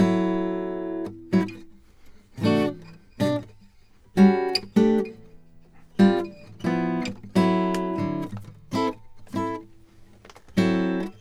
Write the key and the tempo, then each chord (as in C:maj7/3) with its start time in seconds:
D major, 130 BPM
0.14 D:9(*1)/b7
3.83 A:7(13,*1,*5)/b7
5.68 G:9(13,*1,*5)/b7
7.53 D:9